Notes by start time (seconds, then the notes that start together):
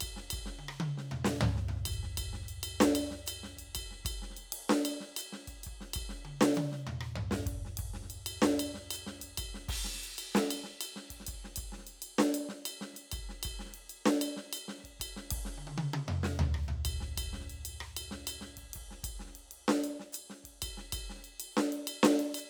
0.01 kick, ride bell
0.17 snare
0.31 kick, ride bell
0.39 kick
0.46 snare
0.59 high tom
0.69 cross-stick
0.80 high tom
0.98 snare
1.12 mid tom
1.25 snare
1.35 hi-hat pedal
1.41 floor tom
1.56 snare
1.69 snare, mid tom
1.76 snare
1.86 kick, ride bell
1.92 hi-hat pedal
1.97 kick
2.03 snare
2.18 kick, ride bell
2.23 kick
2.33 snare
2.42 snare
2.49 ride bell
2.63 ride bell
2.81 snare, hi-hat pedal
2.95 ride bell
3.11 snare
3.27 hi-hat pedal, ride bell
3.43 snare
3.57 kick, ride bell
3.75 kick, ride bell
3.81 kick
3.91 snare
4.05 kick, ride bell
4.12 kick
4.22 snare
4.30 snare
4.37 snare, ride bell
4.43 snare
4.53 ride
4.70 snare
4.85 ride bell
5.01 snare
5.17 hi-hat pedal, ride bell
5.33 snare
5.48 kick, snare, ride bell
5.64 kick, ride bell
5.74 kick
5.81 snare
5.94 kick, ride bell
6.02 kick
6.09 snare
6.25 high tom
6.41 snare
6.54 hi-hat pedal, high tom
6.72 snare
6.87 mid tom
7.01 cross-stick
7.16 floor tom
7.31 snare
7.44 kick, hi-hat pedal, ride
7.52 kick
7.65 snare
7.77 kick, ride
7.87 kick
7.94 snare
8.03 snare
8.10 ride bell
8.26 ride bell
8.42 snare
8.60 ride bell
8.75 snare
8.91 hi-hat pedal, ride bell
9.07 snare
9.19 kick, snare, ride bell
9.38 kick, ride bell
9.44 kick
9.55 snare
9.69 kick, crash
9.76 kick
9.85 snare
9.94 snare
10.04 ride bell
10.18 ride bell
10.35 snare
10.44 snare
10.51 ride bell
10.64 snare
10.81 hi-hat pedal, ride bell
10.96 snare
11.10 kick, ride
11.20 snare
11.27 kick, ride bell
11.33 kick
11.45 snare
11.56 kick, ride bell
11.72 snare
11.79 snare
11.83 snare, ride bell
11.88 snare
12.02 ride bell
12.19 snare, hi-hat pedal
12.34 ride bell
12.49 snare
12.66 hi-hat pedal, ride bell
12.81 snare
12.93 snare, ride bell
13.12 kick, ride bell
13.19 kick
13.29 snare
13.43 kick, ride bell
13.59 snare
13.66 snare
13.70 snare
13.74 snare, ride
13.78 snare
13.90 ride bell
14.06 snare
14.22 ride bell
14.37 snare
14.53 hi-hat pedal, ride bell
14.68 snare
14.79 snare
14.84 kick, ride
15.00 kick, ride bell
15.17 snare
15.31 kick, ride
15.39 kick
15.45 snare
15.58 high tom
15.67 high tom
15.78 high tom
15.94 high tom
16.08 mid tom
16.24 snare
16.35 hi-hat pedal
16.39 floor tom
16.55 cross-stick
16.63 hi-hat pedal
16.68 mid tom
16.85 kick, ride bell
16.91 kick
17.01 snare
17.18 kick, ride bell
17.33 snare
17.41 snare
17.50 ride bell
17.65 ride bell
17.81 cross-stick
17.97 ride bell
18.11 snare
18.27 hi-hat pedal, ride bell
18.41 snare
18.57 kick, ride
18.63 snare
18.74 kick, ride
18.91 snare
19.04 kick, ride bell
19.20 snare
19.24 snare
19.27 snare
19.34 snare, ride
19.51 ride
19.68 snare
19.84 ride bell
20.00 snare
20.13 hi-hat pedal, ride bell
20.30 snare
20.41 kick, snare
20.46 ride
20.62 kick, ride bell
20.68 kick
20.78 snare
20.93 kick, ride bell
20.99 kick
21.10 snare
21.15 snare
21.18 snare
21.24 ride bell
21.40 ride bell
21.52 hi-hat pedal
21.57 snare
21.73 ride
21.88 ride bell
22.03 snare
22.20 ride
22.35 hi-hat pedal, ride bell